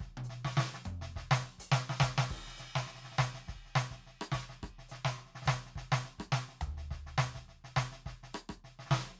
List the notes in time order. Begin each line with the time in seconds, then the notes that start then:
0.01 kick, snare
0.07 kick
0.18 high tom
0.24 hi-hat pedal
0.30 snare
0.45 kick, snare
0.58 snare
0.75 snare
0.85 kick, hi-hat pedal, mid tom
0.93 kick
1.02 snare
1.16 kick, snare
1.23 kick
1.32 snare
1.41 snare, hi-hat pedal
1.59 open hi-hat, kick
1.72 snare
1.90 snare
2.01 kick, snare, hi-hat pedal
2.09 kick
2.12 kick
2.18 snare
2.31 kick, crash
2.38 kick
2.44 kick, snare
2.58 snare, hi-hat pedal
2.76 kick, snare
2.87 snare
2.96 snare
3.03 snare
3.05 snare
3.12 snare
3.17 kick, snare, hi-hat pedal
3.26 kick
3.35 snare
3.48 kick, snare
3.56 kick
3.60 kick
3.66 snare
3.76 snare, hi-hat pedal
3.91 kick, snare
4.07 snare
4.22 cross-stick
4.32 kick, snare, hi-hat pedal
4.50 snare
4.63 kick, cross-stick
4.69 kick
4.79 snare
4.89 snare, hi-hat pedal
5.05 kick, snare
5.18 snare
5.27 snare
5.32 snare
5.36 snare
5.43 kick, snare, hi-hat pedal
5.48 snare
5.53 kick
5.67 snare
5.76 kick, snare
5.82 kick
5.93 snare
6.01 snare, hi-hat pedal
6.19 kick, cross-stick
6.33 snare
6.49 snare
6.61 kick, hi-hat pedal, floor tom
6.69 kick
6.72 kick
6.78 snare
6.91 kick, snare
6.98 kick
7.07 snare
7.18 snare, hi-hat pedal
7.35 kick, snare
7.49 snare
7.65 snare
7.77 kick, snare, hi-hat pedal
7.93 snare
8.06 kick, snare
8.13 kick
8.24 snare
8.34 cross-stick, hi-hat pedal
8.50 kick, cross-stick
8.65 snare
8.80 snare
8.86 snare
8.91 kick, snare, hi-hat pedal
8.99 kick
9.08 snare